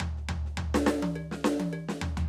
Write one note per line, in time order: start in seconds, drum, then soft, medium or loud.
0.00 floor tom loud
0.16 snare soft
0.29 floor tom loud
0.45 snare soft
0.57 floor tom loud
0.74 snare loud
0.86 snare loud
1.02 high tom loud
1.15 percussion loud
1.31 snare medium
1.44 snare loud
1.59 high tom loud
1.73 percussion loud
1.88 snare loud
2.01 floor tom loud
2.17 floor tom loud